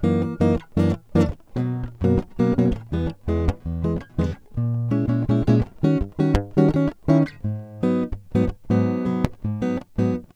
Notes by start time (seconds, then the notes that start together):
0.05 F#2 E3 A#3 D#4
0.23 A#3
0.42 F#2 E3 A#3 D#4
0.78 F#2 E3 A#3 D4
1.17 F#2 E3 A#3 D4
1.57 B2 F#3
2.02 F#2 B2 F#3 A#3
2.41 B2 F#3 A#3 C#4
2.59 B2 F#3 A#3 C#4
2.93 E2 E3 B3
3.29 E2 E3 G#3 B3
3.67 E2
3.85 E3 G#3 B3
4.20 F2 D3 G#3 B3
4.59 A#2
4.92 G#3 C#4 E4
5.09 A#2 G#3 C#4 E4
5.30 A#2 G#3 C#4 E4
5.49 A#2 G#3 C#4 E4
5.85 D#3 C#4 F#4
6.20 D#3 C#4 F#4
6.58 D#3 C#4 F#4
6.70 F#4
6.76 D#3 C#4
7.10 D#3 C#4 E4
7.46 G#2
7.84 F#3 B3 D#4
8.36 G#2 F#3 B3 D#4
8.71 G#2 F#3 B3 D#4
9.07 F#3 B3
9.46 G#2
9.63 F#3 B3 D#4
10.00 G#2 F#3 B3 D#4